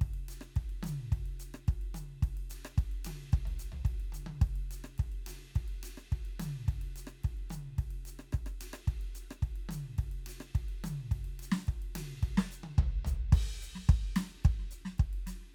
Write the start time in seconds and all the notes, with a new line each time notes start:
0.01 kick, ride
0.14 ride
0.29 hi-hat pedal, ride
0.41 cross-stick
0.56 kick, ride
0.70 ride
0.83 hi-hat pedal, high tom, ride
1.12 kick, ride
1.26 ride
1.40 hi-hat pedal, ride
1.54 cross-stick
1.68 kick, ride
1.81 ride
1.94 hi-hat pedal, high tom, ride
2.22 kick, ride
2.37 ride
2.43 kick
2.50 hi-hat pedal, ride
2.65 cross-stick
2.78 kick, ride
2.92 ride
3.05 hi-hat pedal, high tom, ride
3.33 kick, ride
3.45 floor tom, ride
3.59 hi-hat pedal, ride
3.72 floor tom
3.85 kick, ride
4.00 ride
4.12 hi-hat pedal, high tom, ride
4.26 high tom
4.41 kick, ride
4.56 ride
4.71 hi-hat pedal, ride
4.84 cross-stick
4.98 kick, ride
5.12 ride
5.27 hi-hat pedal, high tom, ride
5.55 kick, ride
5.68 ride
5.83 hi-hat pedal, ride
5.97 cross-stick
6.12 kick, ride
6.25 ride
6.40 hi-hat pedal, high tom, ride
6.68 kick, ride
6.82 ride
6.96 hi-hat pedal, ride
7.07 cross-stick
7.24 kick, ride
7.37 ride
7.50 hi-hat pedal, high tom, ride
7.78 kick, ride
7.91 ride
8.05 hi-hat pedal, ride
8.19 cross-stick
8.33 kick, cross-stick, ride
8.46 cross-stick, ride
8.61 hi-hat pedal, ride
8.73 cross-stick
8.87 kick, ride
9.01 ride
9.15 hi-hat pedal, ride
9.31 cross-stick
9.42 kick, ride
9.56 ride
9.69 hi-hat pedal, high tom, ride
9.98 kick, ride
10.12 ride
10.26 hi-hat pedal, ride
10.40 cross-stick
10.55 kick, ride
10.69 ride
10.84 hi-hat pedal, high tom, ride
11.11 kick, ride
11.25 ride
11.39 hi-hat pedal, ride
11.52 snare
11.67 kick, ride
11.82 ride
11.95 hi-hat pedal, high tom, ride
12.23 kick, ride
12.38 snare
12.51 hi-hat pedal, ride
12.63 high tom
12.78 kick, floor tom
13.05 floor tom, hi-hat pedal
13.32 kick, crash, ride
13.62 hi-hat pedal, ride
13.75 snare
13.89 kick, ride
14.16 snare, hi-hat pedal, ride
14.44 kick, ride
14.59 snare
14.71 hi-hat pedal, ride
14.85 snare
14.98 kick, ride
15.13 ride
15.27 snare, hi-hat pedal, ride
15.41 snare